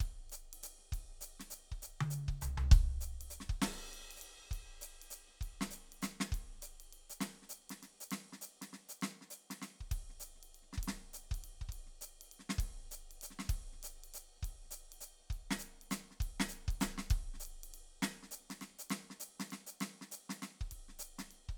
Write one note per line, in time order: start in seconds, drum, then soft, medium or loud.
0.01 kick medium
0.01 ride soft
0.30 hi-hat pedal medium
0.30 ride soft
0.54 ride medium
0.64 hi-hat pedal medium
0.64 ride medium
0.79 snare soft
0.83 snare soft
0.93 kick soft
0.93 ride medium
1.11 snare soft
1.22 hi-hat pedal medium
1.22 ride medium
1.40 snare soft
1.40 ride soft
1.51 hi-hat pedal medium
1.51 ride soft
1.72 kick soft
1.83 hi-hat pedal medium
1.83 ride soft
2.01 high tom loud
2.11 hi-hat pedal medium
2.11 ride soft
2.29 kick soft
2.42 floor tom medium
2.42 hi-hat pedal medium
2.58 floor tom loud
2.72 kick loud
2.72 ride medium
3.02 hi-hat pedal medium
3.02 ride soft
3.22 ride medium
3.31 hi-hat pedal medium
3.31 ride soft
3.41 snare soft
3.50 kick medium
3.62 snare loud
3.62 crash medium
3.88 hi-hat pedal soft
3.94 ride soft
4.05 snare soft
4.12 ride soft
4.17 hi-hat pedal soft
4.22 ride medium
4.38 snare soft
4.45 snare soft
4.52 kick soft
4.52 ride soft
4.69 snare soft
4.82 hi-hat pedal medium
4.82 ride medium
5.03 ride soft
5.11 hi-hat pedal medium
5.11 ride soft
5.29 snare soft
5.42 kick soft
5.42 ride soft
5.62 snare medium
5.71 hi-hat pedal medium
5.71 ride soft
5.93 ride soft
6.03 snare medium
6.03 hi-hat pedal medium
6.03 ride soft
6.21 snare medium
6.33 kick medium
6.33 ride medium
6.54 snare soft
6.63 hi-hat pedal medium
6.63 ride soft
6.81 ride soft
6.93 ride soft
7.11 hi-hat pedal medium
7.21 snare medium
7.21 ride medium
7.43 snare soft
7.50 hi-hat pedal medium
7.50 ride soft
7.70 snare soft
7.70 ride medium
7.83 snare soft
7.83 ride soft
8.01 hi-hat pedal medium
8.12 snare medium
8.12 ride medium
8.33 snare soft
8.42 hi-hat pedal medium
8.42 ride soft
8.62 snare soft
8.62 hi-hat pedal soft
8.62 ride medium
8.74 snare soft
8.74 ride soft
8.90 hi-hat pedal medium
9.02 snare medium
9.02 ride soft
9.22 snare soft
9.31 hi-hat pedal medium
9.31 ride soft
9.51 snare soft
9.51 ride medium
9.62 snare soft
9.62 ride soft
9.81 kick soft
9.92 kick medium
9.92 ride medium
10.10 snare soft
10.21 hi-hat pedal medium
10.21 ride soft
10.36 snare soft
10.44 ride soft
10.55 ride soft
10.63 snare soft
10.73 snare soft
10.78 kick soft
10.84 ride medium
10.88 snare medium
11.14 hi-hat pedal medium
11.14 ride soft
11.32 kick soft
11.32 ride soft
11.45 ride soft
11.54 snare soft
11.62 kick soft
11.69 kick soft
11.69 ride soft
11.87 snare soft
12.02 hi-hat pedal medium
12.02 ride soft
12.22 hi-hat pedal soft
12.22 ride soft
12.32 ride soft
12.40 snare soft
12.50 snare medium
12.59 kick medium
12.59 ride medium
12.92 hi-hat pedal medium
12.92 ride soft
13.12 ride soft
13.22 hi-hat pedal medium
13.22 ride soft
13.31 snare soft
13.40 snare medium
13.45 snare soft
13.50 kick medium
13.50 ride medium
13.73 snare soft
13.84 hi-hat pedal medium
13.84 ride soft
13.97 snare soft
14.04 ride soft
14.15 hi-hat pedal medium
14.15 ride soft
14.37 snare soft
14.43 kick soft
14.43 ride medium
14.65 snare soft
14.72 hi-hat pedal medium
14.72 ride medium
14.93 ride soft
15.01 hi-hat pedal medium
15.01 ride soft
15.21 snare soft
15.31 kick soft
15.31 ride soft
15.52 snare medium
15.59 hi-hat pedal medium
15.59 ride soft
15.82 ride soft
15.92 snare medium
15.92 hi-hat pedal medium
15.92 ride soft
16.12 snare soft
16.21 kick medium
16.21 ride medium
16.41 snare medium
16.49 hi-hat pedal medium
16.54 ride soft
16.69 kick medium
16.69 ride soft
16.81 snare loud
16.81 hi-hat pedal medium
16.99 snare medium
17.11 kick medium
17.11 ride medium
17.35 snare soft
17.41 hi-hat pedal medium
17.46 ride soft
17.64 ride medium
17.75 ride soft
18.03 snare medium
18.03 ride medium
18.23 snare soft
18.32 hi-hat pedal medium
18.32 ride soft
18.51 snare soft
18.51 hi-hat pedal soft
18.51 ride soft
18.62 snare soft
18.62 ride soft
18.80 hi-hat pedal medium
18.91 snare medium
18.91 ride medium
19.11 snare soft
19.21 hi-hat pedal medium
19.21 ride medium
19.41 snare medium
19.41 ride soft
19.51 snare soft
19.51 ride soft
19.67 hi-hat pedal medium
19.81 snare medium
19.81 ride medium
20.02 snare soft
20.12 hi-hat pedal medium
20.12 ride medium
20.30 snare medium
20.30 ride soft
20.43 snare medium
20.43 ride soft
20.62 kick soft
20.72 kick soft
20.72 ride medium
20.89 snare soft
21.00 hi-hat pedal medium
21.00 ride soft
21.19 snare soft
21.19 ride soft
21.32 ride soft
21.49 kick soft